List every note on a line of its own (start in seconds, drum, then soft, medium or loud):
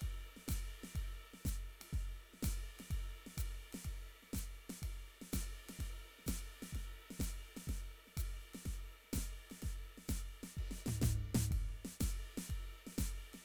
0.01 kick soft
0.01 ride medium
0.36 snare soft
0.48 kick soft
0.48 snare soft
0.48 hi-hat pedal medium
0.48 ride loud
0.83 snare soft
0.83 ride medium
0.94 kick soft
0.94 hi-hat pedal soft
0.94 ride medium
1.33 snare soft
1.45 kick soft
1.45 snare soft
1.45 hi-hat pedal medium
1.45 ride medium
1.81 snare soft
1.81 ride loud
1.93 kick soft
1.93 snare soft
1.93 ride soft
2.33 snare soft
2.42 kick soft
2.42 snare soft
2.42 hi-hat pedal medium
2.42 ride loud
2.48 snare soft
2.79 snare soft
2.79 ride medium
2.91 kick soft
2.91 snare soft
2.91 ride medium
3.26 snare soft
3.38 kick soft
3.38 hi-hat pedal medium
3.38 ride loud
3.73 snare soft
3.73 ride medium
3.85 kick soft
3.85 ride medium
4.22 snare soft
4.33 kick soft
4.33 snare soft
4.33 hi-hat pedal medium
4.33 ride medium
4.69 snare soft
4.69 ride medium
4.82 kick soft
4.82 ride medium
5.21 snare soft
5.32 kick soft
5.32 snare soft
5.32 hi-hat pedal medium
5.32 ride loud
5.69 snare soft
5.69 ride medium
5.79 kick soft
5.79 snare soft
5.79 ride medium
6.19 snare soft
6.26 kick soft
6.26 snare soft
6.26 hi-hat pedal medium
6.26 ride loud
6.62 snare soft
6.62 ride medium
6.73 kick soft
6.73 snare soft
6.73 ride medium
7.10 snare soft
7.20 kick soft
7.20 snare soft
7.20 hi-hat pedal medium
7.20 ride loud
7.57 snare soft
7.57 ride medium
7.67 kick soft
7.67 snare soft
7.67 hi-hat pedal soft
7.67 ride medium
8.07 snare soft
8.17 kick soft
8.17 hi-hat pedal medium
8.17 ride loud
8.54 snare soft
8.54 ride medium
8.65 kick soft
8.65 snare soft
8.65 ride medium
9.04 snare soft
9.13 kick soft
9.13 snare soft
9.13 hi-hat pedal medium
9.13 ride loud
9.18 snare soft
9.50 snare soft
9.50 ride medium
9.62 kick soft
9.62 snare soft
9.62 ride medium
9.97 snare soft
10.08 kick soft
10.08 snare soft
10.08 hi-hat pedal medium
10.08 ride loud
10.43 snare soft
10.43 ride medium
10.55 kick soft
10.55 hi-hat pedal soft
10.55 ride soft
10.71 snare soft
10.86 snare soft
10.86 floor tom medium
11.02 kick soft
11.02 snare medium
11.02 floor tom medium
11.02 hi-hat pedal medium
11.35 snare medium
11.35 floor tom medium
11.51 kick soft
11.51 ride medium
11.85 snare soft
12.00 kick soft
12.00 snare soft
12.00 hi-hat pedal medium
12.00 ride loud
12.37 snare soft
12.37 ride medium
12.49 kick soft
12.49 ride medium
12.87 snare soft
12.98 kick soft
12.98 snare soft
12.98 hi-hat pedal medium
12.98 ride loud
13.33 snare soft
13.33 ride medium